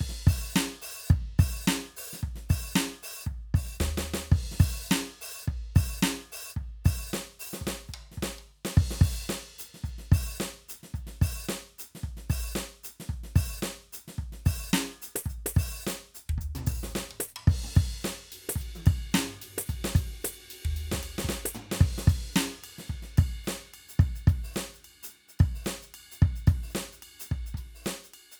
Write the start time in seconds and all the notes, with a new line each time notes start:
0.01 kick
0.10 snare
0.27 open hi-hat, kick
0.54 snare, hi-hat pedal
0.82 open hi-hat
1.08 kick, hi-hat pedal
1.39 open hi-hat, kick
1.65 snare, hi-hat pedal
1.96 open hi-hat
2.13 snare
2.19 kick, hi-hat pedal
2.36 snare
2.49 open hi-hat, kick
2.73 snare, hi-hat pedal
3.03 open hi-hat
3.24 kick, hi-hat pedal
3.55 open hi-hat, kick
3.75 hi-hat pedal
3.80 snare, mid tom
3.98 snare
4.06 hi-hat pedal
4.14 snare
4.32 kick, crash
4.52 snare
4.59 open hi-hat, kick
4.91 snare, hi-hat pedal
5.21 open hi-hat
5.43 hi-hat pedal
5.48 kick
5.75 open hi-hat, kick
5.99 hi-hat pedal
6.03 snare
6.32 open hi-hat
6.51 hi-hat pedal
6.57 kick
6.85 open hi-hat, kick
7.10 snare, hi-hat pedal
7.39 open hi-hat
7.54 snare, hi-hat pedal
7.62 kick
7.67 snare
7.89 kick, hi-hat pedal
7.94 high tom
8.12 snare, hi-hat pedal
8.18 kick
8.23 snare
8.29 hi-hat pedal
8.39 high tom
8.65 snare
8.76 kick, crash
8.91 snare
9.01 open hi-hat, kick
9.26 snare, hi-hat pedal
9.59 closed hi-hat
9.75 snare
9.84 closed hi-hat, kick
9.99 snare
10.12 open hi-hat, kick
10.37 snare, hi-hat pedal
10.69 closed hi-hat
10.83 snare
10.94 closed hi-hat, kick
11.07 snare
11.22 open hi-hat, kick
11.45 snare, hi-hat pedal
11.79 closed hi-hat
11.95 snare
12.04 kick, closed hi-hat
12.17 snare
12.30 open hi-hat, kick
12.53 snare, hi-hat pedal
12.84 closed hi-hat
13.00 snare
13.09 kick, closed hi-hat
13.24 snare
13.36 open hi-hat, kick
13.59 snare, hi-hat pedal
13.93 closed hi-hat
14.08 snare
14.19 kick
14.33 snare
14.46 open hi-hat, kick
14.70 snare, hi-hat pedal
15.02 closed hi-hat
15.16 high tom
15.26 closed hi-hat, kick
15.46 high tom
15.57 open hi-hat, kick
15.84 snare, hi-hat pedal
15.88 closed hi-hat
16.15 closed hi-hat
16.30 mid tom
16.38 kick, closed hi-hat
16.55 mid tom
16.67 kick, open hi-hat
16.84 snare
16.89 hi-hat pedal
16.96 snare
17.11 high tom
17.20 high tom
17.36 floor tom
17.48 kick, crash
17.64 floor tom
17.76 kick, ride bell
18.01 snare, hi-hat pedal
18.32 ride
18.49 high tom
18.56 kick
18.61 ride
18.76 high tom
18.86 kick, ride bell
19.12 snare, floor tom, hi-hat pedal
19.42 ride
19.58 high tom
19.69 kick, ride
19.85 snare
19.95 kick, ride
20.22 hi-hat pedal, high tom, ride
20.51 ride
20.57 hi-hat pedal
20.65 mid tom
20.77 ride
20.92 kick, snare
21.03 ride bell
21.19 snare, hi-hat pedal
21.25 kick
21.29 snare
21.46 high tom
21.55 floor tom
21.72 snare
21.81 kick, crash
21.98 snare
22.08 kick, snare, ride, floor tom
22.33 snare, hi-hat pedal
22.64 ride bell
22.79 snare
22.89 kick, ride
23.03 snare
23.18 kick, ride bell
23.44 snare, hi-hat pedal
23.74 ride bell
23.89 closed hi-hat
24.00 kick, ride bell
24.15 closed hi-hat
24.28 kick, ride
24.43 open hi-hat
24.54 snare, hi-hat pedal
24.74 closed hi-hat
24.85 ride bell
25.03 closed hi-hat
25.10 ride
25.29 closed hi-hat
25.40 kick, ride bell, floor tom
25.54 open hi-hat
25.65 snare, hi-hat pedal
25.82 closed hi-hat
25.94 ride bell
26.11 closed hi-hat
26.22 kick
26.36 closed hi-hat
26.47 kick, ride, floor tom
26.62 open hi-hat
26.70 hi-hat pedal
26.75 snare
26.92 closed hi-hat
27.03 ride bell
27.20 closed hi-hat
27.32 kick
27.46 closed hi-hat
27.55 kick, snare, ride, floor tom
27.75 open hi-hat
27.84 snare, hi-hat pedal
28.04 closed hi-hat
28.14 ride bell
28.32 closed hi-hat